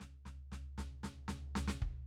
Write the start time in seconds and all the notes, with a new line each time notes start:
0.00 snare, floor tom
0.25 snare, floor tom
0.52 snare, floor tom
0.78 snare, floor tom
1.03 snare, floor tom
1.28 snare, floor tom
1.55 snare, floor tom
1.68 snare, floor tom
1.82 kick